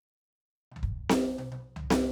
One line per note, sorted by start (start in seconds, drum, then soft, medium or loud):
0.71 high tom soft
0.76 floor tom medium
0.83 kick medium
1.10 snare loud
1.38 high tom medium
1.52 high tom medium
1.76 floor tom medium
1.90 snare loud